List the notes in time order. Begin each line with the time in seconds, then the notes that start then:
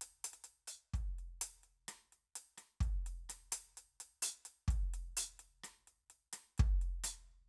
0.01 closed hi-hat
0.24 closed hi-hat
0.33 closed hi-hat
0.44 closed hi-hat
0.67 closed hi-hat
0.94 kick, closed hi-hat
1.19 closed hi-hat
1.41 closed hi-hat
1.63 closed hi-hat
1.88 cross-stick, closed hi-hat
2.12 closed hi-hat
2.36 closed hi-hat
2.58 cross-stick, closed hi-hat
2.80 kick, closed hi-hat
3.06 closed hi-hat
3.29 cross-stick, closed hi-hat
3.52 cross-stick, closed hi-hat
3.77 closed hi-hat
4.00 closed hi-hat
4.22 closed hi-hat
4.45 closed hi-hat
4.68 kick, closed hi-hat
4.94 closed hi-hat
5.17 closed hi-hat
5.39 closed hi-hat
5.64 cross-stick, closed hi-hat
5.87 closed hi-hat
6.10 closed hi-hat
6.33 cross-stick, closed hi-hat
6.58 kick, closed hi-hat
6.81 closed hi-hat
7.04 closed hi-hat, cross-stick